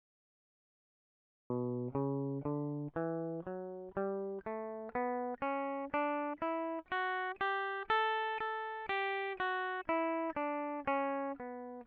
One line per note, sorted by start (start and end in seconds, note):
1.47 1.93 B2
1.96 2.43 C#3
2.46 2.91 D3
2.97 3.44 E3
3.47 3.93 F#3
3.97 4.42 G3
4.46 4.93 A3
4.95 5.37 B3
5.42 5.90 C#4
5.94 6.37 D4
6.42 6.82 E4
6.92 7.37 F#4
7.41 7.86 G4
7.90 8.89 A4
8.89 9.39 G4
9.40 9.84 F#4
9.89 10.33 E4
10.36 10.85 D4
10.88 11.38 C#4
11.40 11.84 B3